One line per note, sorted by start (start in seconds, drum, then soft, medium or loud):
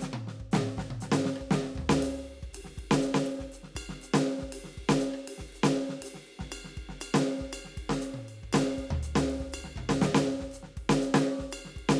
0.01 snare medium
0.01 hi-hat pedal medium
0.14 high tom loud
0.28 snare medium
0.40 kick soft
0.52 snare loud
0.52 hi-hat pedal medium
0.52 high tom loud
0.78 kick soft
0.78 snare medium
0.91 high tom loud
1.01 snare medium
1.01 hi-hat pedal medium
1.12 snare loud
1.24 snare medium
1.24 hi-hat pedal soft
1.36 cross-stick medium
1.41 kick soft
1.51 snare loud
1.51 hi-hat pedal soft
1.62 snare soft
1.76 kick soft
1.76 floor tom medium
1.81 kick soft
1.90 snare loud
1.97 snare soft
2.03 hi-hat pedal medium
2.03 ride loud
2.43 kick soft
2.54 hi-hat pedal medium
2.54 ride loud
2.65 snare soft
2.78 kick soft
2.78 ride medium
2.84 kick soft
2.92 snare loud
3.02 hi-hat pedal medium
3.02 ride soft
3.15 snare loud
3.27 ride medium
3.40 kick soft
3.40 snare soft
3.53 hi-hat pedal medium
3.53 ride medium
3.64 snare soft
3.76 kick soft
3.76 ride bell loud
3.81 kick soft
3.90 snare medium
4.02 hi-hat pedal medium
4.02 ride medium
4.14 snare loud
4.39 snare soft
4.43 kick soft
4.53 hi-hat pedal medium
4.53 ride loud
4.64 snare soft
4.78 kick soft
4.78 ride soft
4.89 snare loud
5.00 hi-hat pedal medium
5.00 ride soft
5.14 cross-stick medium
5.28 ride loud
5.39 kick soft
5.39 snare soft
5.53 hi-hat pedal medium
5.53 ride soft
5.64 snare loud
5.78 ride soft
5.90 snare medium
6.01 kick soft
6.01 ride loud
6.05 hi-hat pedal medium
6.15 snare soft
6.27 ride soft
6.40 kick soft
6.40 snare medium
6.52 hi-hat pedal soft
6.52 ride bell loud
6.65 snare soft
6.77 kick soft
6.77 ride soft
6.83 kick soft
6.89 snare soft
7.01 hi-hat pedal medium
7.01 ride bell loud
7.15 snare loud
7.21 snare soft
7.27 ride soft
7.38 kick soft
7.38 snare soft
7.53 hi-hat pedal medium
7.53 ride bell loud
7.65 snare soft
7.78 kick medium
7.78 ride medium
7.83 kick soft
7.90 snare medium
8.01 hi-hat pedal medium
8.01 ride medium
8.14 closed hi-hat soft
8.14 high tom medium
8.29 ride bell medium
8.44 kick soft
8.53 snare loud
8.53 hi-hat pedal medium
8.53 ride bell loud
8.62 snare soft
8.78 kick soft
8.78 ride bell soft
8.91 floor tom loud
9.03 hi-hat pedal medium
9.03 ride bell medium
9.16 snare loud
9.31 ride medium
9.40 kick soft
9.40 snare soft
9.53 hi-hat pedal medium
9.53 ride bell loud
9.65 snare soft
9.76 kick soft
9.76 mid tom medium
9.82 kick soft
9.90 snare loud
10.02 snare loud
10.02 hi-hat pedal medium
10.15 snare loud
10.20 cross-stick medium
10.26 snare soft
10.40 kick soft
10.40 snare soft
10.52 hi-hat pedal medium
10.52 ride bell soft
10.63 snare soft
10.77 kick soft
10.77 ride medium
10.83 kick soft
10.90 snare loud
11.02 hi-hat pedal medium
11.02 ride soft
11.15 snare loud
11.39 kick soft
11.39 snare soft
11.52 hi-hat pedal medium
11.52 ride bell loud
11.66 snare soft
11.77 kick soft
11.77 ride soft
11.89 snare loud